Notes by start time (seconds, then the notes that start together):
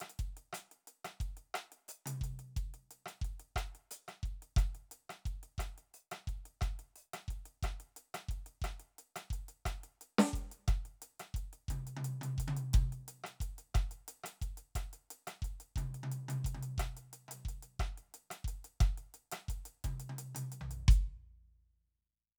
0.01 cross-stick, closed hi-hat
0.10 closed hi-hat
0.19 kick, closed hi-hat
0.37 closed hi-hat
0.53 closed hi-hat, cross-stick
0.72 closed hi-hat
0.88 closed hi-hat
1.05 cross-stick, closed hi-hat
1.21 kick, closed hi-hat
1.38 closed hi-hat
1.55 cross-stick, closed hi-hat
1.73 closed hi-hat
1.89 hi-hat pedal, open hi-hat
2.06 closed hi-hat, high tom
2.22 kick, closed hi-hat
2.40 closed hi-hat
2.57 kick, closed hi-hat
2.75 closed hi-hat
2.91 closed hi-hat
3.06 cross-stick, closed hi-hat
3.22 kick, closed hi-hat
3.40 closed hi-hat
3.56 kick, cross-stick, closed hi-hat
3.76 closed hi-hat
3.92 closed hi-hat
4.09 cross-stick, closed hi-hat
4.24 kick, closed hi-hat
4.43 closed hi-hat
4.57 kick, cross-stick, closed hi-hat
4.75 closed hi-hat
4.92 closed hi-hat
5.10 cross-stick, closed hi-hat
5.26 kick, closed hi-hat
5.44 closed hi-hat
5.59 kick, cross-stick, closed hi-hat
5.78 closed hi-hat
5.94 hi-hat pedal, open hi-hat
6.12 cross-stick, closed hi-hat
6.28 kick, closed hi-hat
6.46 closed hi-hat
6.62 kick, cross-stick, closed hi-hat
6.80 closed hi-hat
6.96 hi-hat pedal, open hi-hat
7.14 cross-stick, closed hi-hat
7.29 kick, closed hi-hat
7.46 closed hi-hat
7.63 kick, cross-stick, closed hi-hat
7.81 closed hi-hat
7.97 closed hi-hat
8.15 cross-stick, closed hi-hat
8.29 kick, closed hi-hat
8.47 closed hi-hat
8.62 kick, cross-stick, closed hi-hat
8.80 closed hi-hat
8.99 closed hi-hat
9.16 cross-stick, closed hi-hat
9.31 kick, closed hi-hat
9.49 closed hi-hat
9.66 kick, cross-stick, closed hi-hat
9.84 closed hi-hat
10.02 closed hi-hat
10.19 snare, closed hi-hat
10.34 kick, closed hi-hat
10.52 closed hi-hat
10.68 kick, cross-stick, closed hi-hat
10.86 closed hi-hat
11.03 closed hi-hat
11.20 cross-stick, closed hi-hat
11.35 kick, closed hi-hat
11.53 closed hi-hat
11.69 kick, closed hi-hat, high tom
11.88 closed hi-hat
11.97 high tom
12.05 closed hi-hat
12.22 closed hi-hat, high tom
12.39 kick, closed hi-hat
12.48 high tom
12.57 closed hi-hat
12.74 kick, closed hi-hat, high tom
12.93 closed hi-hat
13.09 closed hi-hat
13.24 cross-stick, closed hi-hat
13.41 kick, closed hi-hat
13.59 closed hi-hat
13.75 kick, cross-stick, closed hi-hat
13.92 closed hi-hat
14.09 closed hi-hat
14.24 cross-stick, closed hi-hat
14.42 kick, closed hi-hat
14.58 closed hi-hat
14.76 kick, cross-stick, closed hi-hat
14.94 closed hi-hat
15.11 closed hi-hat
15.28 cross-stick, closed hi-hat
15.43 kick, closed hi-hat
15.61 closed hi-hat
15.76 kick, closed hi-hat, high tom
15.95 closed hi-hat
16.04 high tom
16.12 closed hi-hat
16.29 closed hi-hat, high tom
16.45 kick, closed hi-hat
16.55 high tom
16.63 closed hi-hat
16.78 kick, cross-stick, closed hi-hat
16.97 closed hi-hat
17.14 closed hi-hat
17.29 closed hi-hat, high tom
17.46 kick, closed hi-hat
17.63 closed hi-hat
17.80 kick, cross-stick, closed hi-hat
17.98 closed hi-hat
18.15 closed hi-hat
18.31 cross-stick, closed hi-hat
18.45 kick, closed hi-hat
18.65 closed hi-hat
18.81 kick, cross-stick, closed hi-hat
18.98 closed hi-hat
19.15 closed hi-hat
19.32 cross-stick, closed hi-hat
19.49 kick, closed hi-hat
19.66 closed hi-hat
19.85 kick, closed hi-hat, high tom
20.00 closed hi-hat
20.10 high tom
20.19 closed hi-hat
20.35 closed hi-hat, high tom
20.53 closed hi-hat
20.62 floor tom
20.72 closed hi-hat
20.89 closed hi-hat, kick